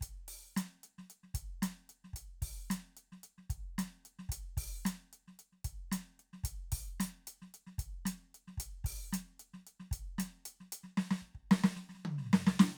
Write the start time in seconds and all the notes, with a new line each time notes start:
0.01 kick, closed hi-hat
0.28 open hi-hat
0.57 snare, closed hi-hat, hi-hat pedal
0.83 closed hi-hat
0.98 snare
1.10 closed hi-hat
1.23 snare
1.34 kick, closed hi-hat
1.62 snare, closed hi-hat
1.89 closed hi-hat
2.04 snare
2.13 kick, closed hi-hat
2.42 kick, open hi-hat
2.70 snare, closed hi-hat, hi-hat pedal
2.97 closed hi-hat
3.12 snare
3.23 closed hi-hat
3.38 snare
3.50 kick, closed hi-hat
3.78 snare, closed hi-hat
4.05 closed hi-hat
4.19 snare
4.29 kick, closed hi-hat
4.57 kick, open hi-hat
4.85 snare, closed hi-hat, hi-hat pedal
5.13 closed hi-hat
5.28 snare
5.39 closed hi-hat
5.52 snare
5.65 kick, closed hi-hat
5.92 snare, closed hi-hat
6.19 closed hi-hat
6.33 snare
6.44 kick, closed hi-hat
6.72 kick, open hi-hat
7.00 snare, hi-hat pedal, open hi-hat
7.27 closed hi-hat
7.42 snare
7.54 closed hi-hat
7.67 snare
7.78 kick, closed hi-hat
8.06 snare, closed hi-hat
8.35 closed hi-hat
8.48 snare
8.58 kick, closed hi-hat
8.84 kick, open hi-hat
9.13 snare, closed hi-hat, hi-hat pedal
9.40 closed hi-hat
9.54 snare
9.67 closed hi-hat
9.80 snare
9.91 kick, closed hi-hat
10.18 snare, closed hi-hat
10.46 closed hi-hat
10.60 snare
10.72 closed hi-hat
10.84 snare
10.97 snare
11.11 snare
11.22 kick
11.35 kick
11.51 snare
11.64 snare
11.76 snare
11.89 snare
11.94 snare
11.99 snare
12.04 snare, high tom
12.18 snare
12.22 snare
12.26 snare
12.30 snare
12.33 snare
12.47 snare
12.60 snare